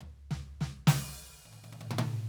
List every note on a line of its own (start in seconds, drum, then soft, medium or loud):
0.02 floor tom medium
0.31 snare medium
0.31 floor tom medium
0.61 snare medium
0.61 floor tom soft
0.87 snare loud
0.87 percussion loud
1.08 snare soft
1.45 high tom soft
1.53 high tom soft
1.64 high tom soft
1.73 high tom medium
1.81 high tom medium
1.91 high tom medium
1.98 high tom loud